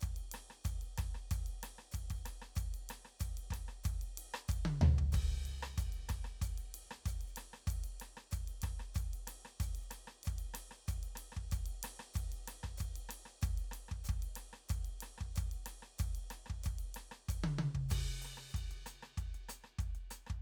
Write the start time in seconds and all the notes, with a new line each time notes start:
0.01 kick, hi-hat pedal, ride
0.17 ride
0.32 cross-stick, ride
0.51 cross-stick
0.65 kick, hi-hat pedal, ride
0.82 ride
0.98 kick, cross-stick, ride
1.15 cross-stick
1.32 kick, hi-hat pedal, ride
1.47 ride
1.64 cross-stick, ride
1.79 cross-stick
1.92 kick, hi-hat pedal, ride
2.11 kick, ride
2.16 hi-hat pedal
2.26 cross-stick, ride
2.42 cross-stick
2.56 kick, hi-hat pedal, ride
2.75 ride
2.90 cross-stick, ride
3.05 cross-stick
3.20 kick, hi-hat pedal, ride
3.38 ride
3.51 kick, cross-stick, ride
3.69 cross-stick
3.84 kick, hi-hat pedal, ride
4.02 ride
4.18 ride
4.34 cross-stick
4.49 kick, hi-hat pedal, ride
4.66 high tom
4.82 floor tom
4.99 kick
5.13 kick, hi-hat pedal, crash, ride
5.46 ride
5.63 cross-stick
5.78 kick, hi-hat pedal, ride
5.93 ride
6.09 kick, cross-stick, ride
6.25 cross-stick
6.42 kick, hi-hat pedal, ride
6.58 ride
6.75 ride
6.91 cross-stick
7.06 kick, hi-hat pedal, ride
7.21 ride
7.28 hi-hat pedal
7.37 cross-stick, ride
7.54 cross-stick
7.68 kick, hi-hat pedal, ride
7.84 ride
8.01 cross-stick, ride
8.17 cross-stick
8.32 kick, hi-hat pedal, ride
8.48 ride
8.63 kick, cross-stick, ride
8.80 cross-stick
8.95 kick, hi-hat pedal, ride
9.14 ride
9.28 cross-stick, ride
9.45 cross-stick
9.61 kick, hi-hat pedal, ride
9.75 ride
9.81 hi-hat pedal
9.91 cross-stick, ride
10.08 cross-stick
10.24 kick, hi-hat pedal, ride
10.39 ride
10.54 cross-stick, ride
10.71 cross-stick
10.88 kick, hi-hat pedal, ride
11.04 ride
11.16 cross-stick, ride
11.33 cross-stick
11.37 kick
11.52 kick, hi-hat pedal, ride
11.66 ride
11.84 cross-stick, ride
12.00 cross-stick
12.14 kick, hi-hat pedal, ride
12.32 ride
12.48 cross-stick, ride
12.64 kick, cross-stick
12.78 kick, hi-hat pedal, ride
12.96 ride
13.09 cross-stick, ride
13.26 cross-stick
13.42 kick, hi-hat pedal, ride
13.58 ride
13.72 cross-stick, ride
13.89 kick, cross-stick
14.05 hi-hat pedal, ride
14.09 kick
14.23 ride
14.36 cross-stick, ride
14.53 cross-stick
14.69 kick, hi-hat pedal, ride
14.85 ride
15.01 cross-stick, ride
15.18 kick, cross-stick
15.36 kick, hi-hat pedal, ride
15.52 ride
15.66 cross-stick, ride
15.83 cross-stick
15.99 kick, hi-hat pedal, ride
16.15 ride
16.31 cross-stick, ride
16.46 kick, cross-stick
16.64 kick, hi-hat pedal, ride
16.79 ride
16.95 cross-stick, ride
17.12 cross-stick
17.29 kick, hi-hat pedal, ride
17.44 high tom
17.59 high tom
17.75 kick
17.89 closed hi-hat, kick, hi-hat pedal, crash
18.22 cross-stick, open hi-hat
18.38 cross-stick
18.50 hi-hat pedal
18.55 kick, closed hi-hat
18.71 closed hi-hat
18.87 closed hi-hat, cross-stick
19.03 cross-stick
19.18 kick, closed hi-hat
19.35 closed hi-hat
19.49 closed hi-hat, cross-stick
19.64 cross-stick
19.79 kick, closed hi-hat
19.95 closed hi-hat
20.11 closed hi-hat, cross-stick
20.27 kick, cross-stick